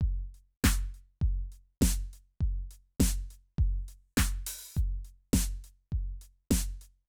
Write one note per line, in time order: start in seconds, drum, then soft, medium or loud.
0.05 kick medium
0.34 closed hi-hat soft
0.64 kick medium
0.64 snare loud
0.94 closed hi-hat soft
1.21 kick medium
1.21 closed hi-hat soft
1.52 closed hi-hat soft
1.81 kick medium
1.81 snare loud
2.13 closed hi-hat medium
2.41 kick medium
2.41 closed hi-hat soft
2.71 closed hi-hat medium
3.00 kick medium
3.00 snare loud
3.00 closed hi-hat soft
3.30 closed hi-hat medium
3.58 kick medium
3.58 closed hi-hat soft
3.58 crash soft
3.58 ride soft
3.88 closed hi-hat medium
4.17 kick medium
4.17 snare loud
4.46 open hi-hat loud
4.75 kick medium
4.75 closed hi-hat soft
4.75 hi-hat pedal medium
5.05 closed hi-hat soft
5.33 kick medium
5.33 snare loud
5.64 closed hi-hat medium
5.92 kick medium
6.21 closed hi-hat medium
6.50 kick medium
6.50 snare loud
6.81 closed hi-hat medium